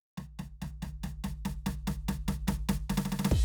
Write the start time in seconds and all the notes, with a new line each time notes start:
0.18 snare, floor tom
0.39 snare, floor tom
0.62 snare, floor tom
0.83 snare, floor tom
1.04 snare, floor tom
1.24 snare, floor tom
1.46 snare, floor tom
1.66 snare, floor tom
1.88 snare, floor tom
2.09 snare, floor tom
2.28 snare, floor tom
2.48 snare, floor tom
2.69 snare, floor tom
2.90 snare
2.98 snare
3.06 snare
3.12 snare
3.19 snare
3.25 snare
3.32 kick, crash